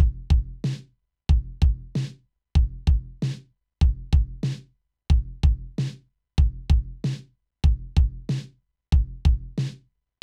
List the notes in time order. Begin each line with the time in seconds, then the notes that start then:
0.01 kick
0.32 kick
0.66 snare
1.31 kick
1.64 kick
1.97 snare
2.57 kick
2.89 kick
3.24 snare
3.83 kick
4.15 kick
4.45 snare
5.12 kick
5.45 kick
5.80 snare
6.40 kick
6.72 kick
7.06 snare
7.66 kick
7.99 kick
8.31 snare
8.94 kick
9.27 kick
9.60 snare